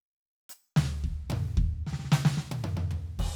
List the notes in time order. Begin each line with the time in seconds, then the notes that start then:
0.49 percussion
0.76 snare, floor tom
1.04 kick
1.30 mid tom, high tom
1.57 kick, snare
1.87 snare
1.93 snare
1.99 snare
2.05 snare
2.10 snare
2.12 snare
2.25 snare
2.37 snare
2.51 high tom
2.64 mid tom
2.77 mid tom
2.91 floor tom
3.19 kick, crash